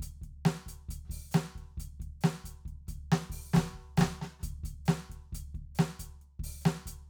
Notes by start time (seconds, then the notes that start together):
0.01 closed hi-hat, kick
0.23 kick, closed hi-hat
0.46 snare
0.67 closed hi-hat, kick
0.90 closed hi-hat, kick, snare
1.06 snare
1.11 open hi-hat, kick
1.32 snare, hi-hat pedal
1.56 kick, closed hi-hat
1.79 closed hi-hat, kick, snare
2.01 kick, closed hi-hat
2.22 snare, hi-hat pedal
2.45 closed hi-hat, kick
2.66 kick, closed hi-hat
2.88 closed hi-hat, kick, snare
3.13 snare
3.31 open hi-hat, kick
3.55 kick, snare, hi-hat pedal
3.58 snare
3.75 kick
3.98 kick, snare, hi-hat pedal
4.02 snare
4.23 snare
4.41 closed hi-hat, kick, snare
4.65 closed hi-hat, kick
4.87 snare, hi-hat pedal
5.11 kick, closed hi-hat
5.34 closed hi-hat, kick
5.56 kick, closed hi-hat
5.76 snare, hi-hat pedal
6.01 closed hi-hat, kick
6.23 closed hi-hat
6.41 kick
6.45 open hi-hat
6.62 hi-hat pedal
6.67 snare
6.87 closed hi-hat, kick